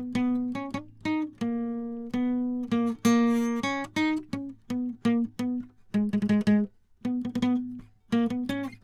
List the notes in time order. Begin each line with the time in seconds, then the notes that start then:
0.00 B3
0.16 B3
0.56 C#4
0.76 D4
1.07 D#4
1.43 A#3
2.15 B3
2.73 A#3
3.06 A#3
3.65 C#4
3.98 D#4
4.34 C#4
4.71 B3
5.06 A#3
5.41 B3
5.96 G#3
6.14 G#3
6.23 G#3
6.31 G#3
6.48 G#3
7.06 B3
7.26 C4
7.37 C4
7.44 B3
8.14 A#3
8.32 B3
8.51 C#4